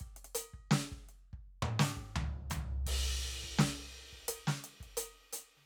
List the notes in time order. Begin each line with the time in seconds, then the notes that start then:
0.01 kick
0.17 closed hi-hat
0.25 closed hi-hat
0.35 closed hi-hat
0.54 kick
0.71 snare
0.92 kick
1.09 closed hi-hat
1.33 kick
1.62 high tom
1.79 snare
1.97 kick
2.16 floor tom
2.50 floor tom, hi-hat pedal
2.86 kick, crash, ride
3.44 kick
3.59 snare
4.13 kick
4.28 closed hi-hat
4.47 snare
4.64 closed hi-hat
4.81 kick, closed hi-hat
4.97 open hi-hat
5.33 open hi-hat
5.57 snare
5.60 snare